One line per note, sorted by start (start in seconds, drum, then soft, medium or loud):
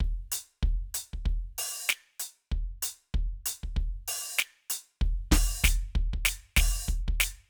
0.01 kick medium
0.01 crash soft
0.32 closed hi-hat loud
0.63 kick medium
0.63 crash soft
0.95 closed hi-hat loud
1.14 kick soft
1.26 kick medium
1.26 crash soft
1.59 open hi-hat loud
1.90 snare loud
1.90 hi-hat pedal medium
2.20 closed hi-hat loud
2.52 kick medium
2.83 closed hi-hat loud
3.15 kick medium
3.46 closed hi-hat loud
3.64 kick soft
3.77 kick medium
3.81 crash soft
4.08 open hi-hat loud
4.39 snare loud
4.39 hi-hat pedal medium
4.70 closed hi-hat loud
5.02 kick medium
5.02 crash soft
5.07 ride soft
5.32 open hi-hat loud
5.32 kick loud
5.32 snare loud
5.62 closed hi-hat loud
5.62 kick medium
5.62 snare loud
5.62 hi-hat pedal soft
5.96 kick medium
6.14 kick medium
6.26 closed hi-hat loud
6.26 snare loud
6.57 open hi-hat loud
6.57 kick loud
6.57 snare loud
6.88 kick medium
6.88 hi-hat pedal soft
7.09 kick medium
7.16 kick soft
7.20 closed hi-hat loud
7.20 snare loud
7.20 hi-hat pedal soft